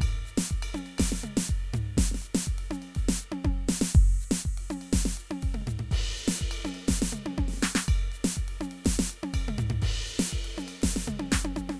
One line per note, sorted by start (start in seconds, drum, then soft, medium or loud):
0.01 kick medium
0.01 hi-hat pedal medium
0.01 ride bell loud
0.26 hi-hat pedal medium
0.26 ride medium
0.38 snare loud
0.50 kick medium
0.50 hi-hat pedal medium
0.50 ride loud
0.63 ride bell loud
0.75 hi-hat pedal medium
0.75 high tom loud
0.86 ride bell medium
0.99 kick medium
0.99 snare loud
0.99 hi-hat pedal medium
0.99 ride bell loud
1.12 snare medium
1.24 hi-hat pedal medium
1.24 mid tom loud
1.37 snare loud
1.48 kick medium
1.48 hi-hat pedal medium
1.48 ride loud
1.74 floor tom loud
1.74 hi-hat pedal loud
1.97 kick medium
1.97 snare loud
1.97 hi-hat pedal medium
1.97 ride loud
2.12 snare soft
2.15 snare medium
2.22 hi-hat pedal medium
2.22 ride loud
2.35 snare loud
2.46 kick medium
2.46 hi-hat pedal medium
2.46 ride loud
2.59 ride loud
2.71 hi-hat pedal medium
2.71 high tom loud
2.82 ride bell medium
2.95 kick medium
2.95 hi-hat pedal medium
2.95 ride loud
3.09 snare loud
3.20 hi-hat pedal loud
3.32 high tom loud
3.42 kick medium
3.42 hi-hat pedal soft
3.42 high tom loud
3.68 snare loud
3.68 hi-hat pedal medium
3.81 snare loud
3.93 kick loud
3.93 hi-hat pedal medium
3.93 crash loud
4.21 hi-hat pedal medium
4.31 snare loud
4.44 kick medium
4.44 hi-hat pedal medium
4.58 ride loud
4.70 hi-hat pedal loud
4.70 high tom loud
4.81 ride bell medium
4.93 kick medium
4.93 snare loud
4.93 hi-hat pedal medium
4.93 ride loud
5.06 snare medium
5.17 hi-hat pedal medium
5.17 ride loud
5.31 high tom loud
5.41 kick medium
5.41 hi-hat pedal medium
5.41 ride loud
5.55 mid tom medium
5.61 mid tom soft
5.67 floor tom loud
5.67 hi-hat pedal loud
5.79 floor tom medium
5.91 kick medium
5.91 hi-hat pedal medium
5.91 ride loud
6.15 hi-hat pedal loud
6.15 ride medium
6.28 snare loud
6.39 kick medium
6.39 hi-hat pedal medium
6.39 ride loud
6.51 ride bell loud
6.65 hi-hat pedal medium
6.65 high tom loud
6.75 ride loud
6.88 kick medium
6.88 snare loud
6.88 hi-hat pedal medium
6.88 ride loud
7.02 snare loud
7.13 hi-hat pedal medium
7.13 mid tom loud
7.26 high tom loud
7.36 kick medium
7.36 hi-hat pedal soft
7.36 high tom loud
7.48 snare medium
7.54 snare soft
7.58 kick soft
7.58 snare soft
7.62 snare loud
7.62 hi-hat pedal loud
7.75 snare loud
7.86 kick medium
7.86 hi-hat pedal medium
7.86 ride bell loud
8.12 hi-hat pedal medium
8.12 ride medium
8.24 snare loud
8.36 kick medium
8.36 hi-hat pedal medium
8.36 ride loud
8.48 ride loud
8.61 hi-hat pedal medium
8.61 high tom loud
8.71 ride loud
8.85 kick medium
8.85 snare loud
8.85 hi-hat pedal medium
8.85 ride loud
8.99 snare loud
9.10 hi-hat pedal medium
9.10 ride loud
9.23 high tom loud
9.33 kick medium
9.33 hi-hat pedal medium
9.33 ride bell loud
9.48 mid tom loud
9.58 floor tom loud
9.58 hi-hat pedal medium
9.70 floor tom loud
9.82 kick medium
9.82 hi-hat pedal medium
9.82 ride loud
10.06 hi-hat pedal medium
10.06 ride loud
10.19 snare loud
10.31 kick medium
10.31 hi-hat pedal medium
10.31 ride loud
10.45 ride loud
10.58 hi-hat pedal loud
10.58 high tom loud
10.68 ride bell loud
10.82 kick medium
10.82 snare loud
10.82 hi-hat pedal medium
10.82 ride loud
10.96 snare medium
11.07 kick soft
11.07 hi-hat pedal medium
11.07 mid tom loud
11.20 high tom loud
11.30 kick medium
11.30 snare loud
11.30 hi-hat pedal medium
11.45 high tom loud
11.56 kick soft
11.56 hi-hat pedal loud
11.56 high tom loud
11.69 snare soft
11.69 high tom loud